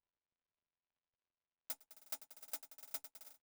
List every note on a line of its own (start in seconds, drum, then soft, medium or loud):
1.70 closed hi-hat loud
1.81 closed hi-hat soft
1.91 closed hi-hat soft
1.96 closed hi-hat soft
2.01 closed hi-hat soft
2.06 closed hi-hat soft
2.10 closed hi-hat soft
2.12 closed hi-hat loud
2.21 closed hi-hat medium
2.31 closed hi-hat medium
2.37 closed hi-hat soft
2.41 closed hi-hat soft
2.43 closed hi-hat medium
2.48 closed hi-hat soft
2.52 closed hi-hat soft
2.53 closed hi-hat loud
2.63 closed hi-hat medium
2.71 closed hi-hat medium
2.78 closed hi-hat medium
2.83 closed hi-hat medium
2.88 closed hi-hat soft
2.91 closed hi-hat soft
2.94 closed hi-hat loud
3.04 closed hi-hat medium
3.15 closed hi-hat medium
3.21 closed hi-hat medium
3.25 closed hi-hat soft
3.26 closed hi-hat medium
3.30 closed hi-hat soft
3.34 closed hi-hat soft